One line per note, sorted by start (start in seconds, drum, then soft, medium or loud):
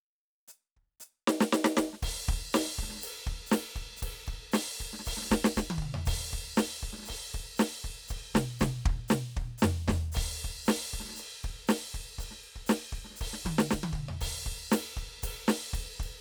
0.48 hi-hat pedal medium
0.76 kick soft
1.00 hi-hat pedal loud
1.27 snare loud
1.40 snare loud
1.52 snare loud
1.64 snare loud
1.77 kick soft
1.77 snare loud
1.93 snare soft
2.02 kick medium
2.02 crash loud
2.28 kick loud
2.53 snare loud
2.53 hi-hat pedal loud
2.53 crash loud
2.78 kick medium
2.78 snare soft
2.78 crash soft
2.86 snare soft
2.89 snare soft
2.92 snare soft
2.94 snare soft
2.96 snare soft
2.98 snare soft
2.98 hi-hat pedal medium
3.02 snare soft
3.02 crash loud
3.26 kick medium
3.26 crash soft
3.46 hi-hat pedal medium
3.51 snare loud
3.51 crash loud
3.76 kick medium
3.76 crash soft
3.87 snare soft
3.90 snare soft
3.96 snare soft
3.96 hi-hat pedal medium
4.01 kick medium
4.01 snare soft
4.01 crash loud
4.27 kick medium
4.27 crash medium
4.52 snare loud
4.52 hi-hat pedal medium
4.52 crash loud
4.80 kick soft
4.80 crash medium
4.93 snare soft
4.99 snare soft
5.05 kick medium
5.05 hi-hat pedal medium
5.05 crash loud
5.17 snare soft
5.21 snare soft
5.25 snare soft
5.31 kick medium
5.31 snare loud
5.44 snare loud
5.56 kick medium
5.56 snare loud
5.56 hi-hat pedal medium
5.70 high tom loud
5.78 kick medium
5.82 mid tom medium
5.94 floor tom loud
6.05 kick loud
6.05 hi-hat pedal medium
6.05 crash loud
6.29 kick medium
6.29 crash soft
6.56 kick soft
6.56 snare loud
6.56 hi-hat pedal medium
6.56 crash loud
6.82 kick medium
6.82 crash soft
6.93 snare soft
6.98 snare soft
7.02 snare soft
7.02 hi-hat pedal medium
7.05 snare soft
7.05 crash loud
7.08 kick soft
7.08 snare soft
7.11 snare soft
7.34 kick medium
7.34 crash medium
7.57 snare loud
7.57 hi-hat pedal medium
7.57 crash medium
7.84 kick medium
7.84 crash soft
8.08 kick medium
8.08 hi-hat pedal medium
8.08 crash medium
8.34 kick soft
8.34 snare loud
8.34 mid tom loud
8.59 kick medium
8.59 snare loud
8.59 hi-hat pedal medium
8.59 mid tom loud
8.85 kick loud
8.85 mid tom soft
9.08 kick soft
9.08 snare loud
9.08 hi-hat pedal medium
9.08 mid tom loud
9.36 kick medium
9.36 mid tom medium
9.58 hi-hat pedal medium
9.62 kick soft
9.62 snare loud
9.62 floor tom loud
9.88 kick medium
9.88 snare loud
9.88 floor tom loud
10.12 hi-hat pedal medium
10.12 crash loud
10.17 kick medium
10.44 kick medium
10.65 kick soft
10.65 snare loud
10.65 hi-hat pedal medium
10.65 crash loud
10.93 kick medium
11.00 kick soft
11.00 snare soft
11.05 snare soft
11.08 snare soft
11.11 snare soft
11.14 snare soft
11.14 hi-hat pedal medium
11.16 snare soft
11.18 snare soft
11.18 crash medium
11.43 kick medium
11.43 crash medium
11.67 snare loud
11.67 hi-hat pedal medium
11.67 crash loud
11.94 kick medium
11.94 crash soft
12.18 kick medium
12.18 hi-hat pedal medium
12.18 crash medium
12.31 snare soft
12.42 kick soft
12.42 crash soft
12.56 kick soft
12.66 snare loud
12.66 hi-hat pedal loud
12.66 crash medium
12.92 kick medium
12.92 crash soft
13.04 snare soft
13.10 snare soft
13.14 snare soft
13.14 hi-hat pedal medium
13.21 kick medium
13.21 crash loud
13.33 snare soft
13.45 kick medium
13.45 high tom loud
13.58 snare loud
13.71 kick soft
13.71 snare loud
13.71 hi-hat pedal medium
13.83 high tom loud
13.93 kick medium
13.93 mid tom medium
14.08 floor tom medium
14.21 kick medium
14.21 hi-hat pedal medium
14.21 crash loud
14.44 kick medium
14.44 crash soft
14.71 snare loud
14.71 hi-hat pedal medium
14.71 crash loud
14.97 kick medium
14.97 crash soft
15.17 snare soft
15.22 kick medium
15.22 hi-hat pedal loud
15.22 crash loud
15.48 snare loud
15.48 crash loud
15.73 kick medium
15.73 crash medium
15.99 kick medium
15.99 crash medium